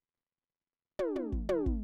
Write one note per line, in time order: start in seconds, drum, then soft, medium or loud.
0.99 floor tom medium
0.99 high tom loud
1.16 floor tom medium
1.16 high tom medium
1.33 kick soft
1.49 floor tom loud
1.49 high tom loud
1.67 kick soft